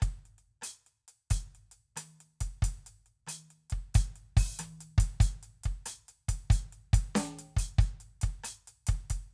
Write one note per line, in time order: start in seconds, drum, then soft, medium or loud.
0.00 kick loud
0.00 cross-stick soft
0.00 closed hi-hat medium
0.25 closed hi-hat soft
0.38 closed hi-hat soft
0.61 closed hi-hat loud
0.61 cross-stick soft
0.61 cross-stick medium
0.86 closed hi-hat soft
1.08 closed hi-hat medium
1.30 closed hi-hat loud
1.30 kick loud
1.55 closed hi-hat soft
1.71 closed hi-hat medium
1.96 cross-stick medium
1.96 closed hi-hat loud
1.96 high tom soft
2.20 closed hi-hat soft
2.40 kick medium
2.40 closed hi-hat loud
2.62 kick loud
2.62 closed hi-hat loud
2.86 closed hi-hat medium
3.06 closed hi-hat soft
3.27 closed hi-hat loud
3.27 cross-stick medium
3.27 high tom soft
3.50 closed hi-hat soft
3.70 kick medium
3.70 closed hi-hat medium
3.94 closed hi-hat loud
3.94 kick loud
4.16 closed hi-hat soft
4.37 open hi-hat loud
4.37 kick loud
4.56 cross-stick medium
4.56 closed hi-hat loud
4.56 hi-hat pedal soft
4.56 high tom medium
4.80 closed hi-hat medium
4.98 kick loud
4.98 closed hi-hat loud
5.20 closed hi-hat loud
5.20 kick loud
5.43 closed hi-hat medium
5.63 kick medium
5.63 closed hi-hat medium
5.86 closed hi-hat loud
5.86 cross-stick medium
6.08 closed hi-hat medium
6.28 kick medium
6.28 closed hi-hat loud
6.50 closed hi-hat loud
6.50 kick loud
6.72 closed hi-hat soft
6.93 kick loud
6.93 closed hi-hat loud
7.15 closed hi-hat loud
7.15 snare loud
7.15 high tom medium
7.20 cross-stick soft
7.39 closed hi-hat medium
7.57 closed hi-hat loud
7.57 kick medium
7.78 closed hi-hat medium
7.78 kick loud
8.00 closed hi-hat medium
8.21 kick medium
8.21 closed hi-hat loud
8.44 closed hi-hat loud
8.44 cross-stick medium
8.67 closed hi-hat medium
8.87 kick loud
8.87 closed hi-hat loud
9.10 kick medium
9.10 closed hi-hat loud